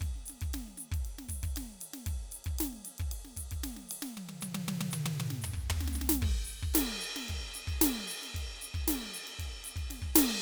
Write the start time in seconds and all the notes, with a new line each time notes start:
0.01 kick, ride
0.16 snare
0.26 snare, hi-hat pedal, ride
0.41 kick, ride
0.53 snare, ride
0.68 snare
0.77 snare, hi-hat pedal
0.92 kick, ride
1.05 ride
1.19 snare
1.29 kick, hi-hat pedal, ride
1.43 kick, ride
1.56 snare, ride
1.68 snare
1.80 hi-hat pedal, ride
1.94 snare, ride
2.06 kick, ride
2.21 snare
2.31 snare, hi-hat pedal, ride
2.44 kick, ride
2.59 snare, ride
2.73 snare
2.85 snare, hi-hat pedal, ride
2.98 kick, ride
3.11 ride
3.25 snare
3.37 kick, hi-hat pedal, ride
3.51 kick, ride
3.64 snare, ride
3.77 snare
3.89 hi-hat pedal, ride
4.02 snare
4.17 high tom
4.29 high tom
4.41 hi-hat pedal, high tom
4.55 high tom
4.68 high tom
4.81 high tom
4.91 hi-hat pedal, mid tom
5.06 mid tom
5.20 mid tom
5.30 snare
5.42 floor tom, hi-hat pedal
5.54 kick
5.66 floor tom, hi-hat pedal
5.81 snare
5.88 snare
5.93 snare, hi-hat pedal
6.01 snare
6.09 snare
6.21 kick, crash
6.44 hi-hat pedal
6.63 kick
6.74 snare, ride
6.91 snare
7.01 hi-hat pedal
7.16 snare
7.28 kick, ride
7.40 snare
7.54 snare, hi-hat pedal, ride
7.67 kick, ride
7.81 snare, ride
7.98 snare
8.07 hi-hat pedal, ride
8.22 snare, ride
8.34 kick, ride
8.47 snare
8.61 snare, hi-hat pedal, ride
8.74 kick, ride
8.88 snare, ride
9.02 snare
9.14 hi-hat pedal, ride
9.23 snare, ride
9.39 kick, ride
9.51 snare
9.64 snare, hi-hat pedal, ride
9.76 kick, ride
9.90 snare, ride
10.02 kick
10.15 snare, hi-hat pedal, ride
10.31 snare